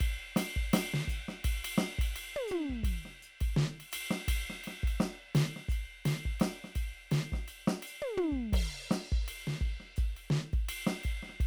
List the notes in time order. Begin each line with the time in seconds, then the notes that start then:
0.01 kick, ride
0.37 snare, ride
0.57 kick
0.74 snare, ride
0.94 snare
1.08 kick, hi-hat pedal, ride
1.29 snare
1.45 kick, ride
1.65 ride
1.78 snare
1.99 kick, ride
2.16 ride
2.36 open hi-hat, high tom
2.48 floor tom, hi-hat pedal
2.70 kick, snare
2.84 kick, ride
3.06 snare
3.22 snare, hi-hat pedal
3.41 kick, ride
3.57 snare
3.81 ride
3.92 kick, hi-hat pedal, ride
4.11 snare
4.29 kick, ride
4.50 snare
4.64 snare, ride
4.84 kick
4.88 ride
5.01 snare
5.36 snare, ride bell
5.57 snare
5.69 kick, hi-hat pedal, ride
6.06 snare, ride bell
6.26 kick
6.40 snare, ride bell
6.65 snare
6.76 kick, hi-hat pedal, ride bell
7.12 snare, ride bell
7.33 kick, snare
7.48 hi-hat pedal, ride bell
7.68 snare
7.83 ride bell
7.88 hi-hat pedal
8.02 high tom
8.16 floor tom, hi-hat pedal
8.32 kick
8.53 kick, ride bell, crash
8.92 snare, hi-hat pedal
9.12 kick
9.28 ride bell
9.48 snare
9.62 kick
9.81 snare
9.97 kick, hi-hat pedal, ride bell
10.17 ride bell
10.31 snare
10.53 kick, ride bell
10.69 ride
10.87 snare
11.04 kick, ride
11.23 snare
11.30 snare
11.41 kick, ride